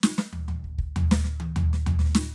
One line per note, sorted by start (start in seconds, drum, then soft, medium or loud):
0.01 snare soft
0.04 snare loud
0.19 snare loud
0.34 floor tom medium
0.49 floor tom medium
0.65 kick soft
0.79 kick medium
0.97 floor tom loud
1.08 hi-hat pedal soft
1.12 snare loud
1.25 snare soft
1.41 high tom medium
1.57 floor tom loud
1.74 snare soft
1.87 floor tom loud
2.00 snare soft
2.05 snare soft
2.16 snare loud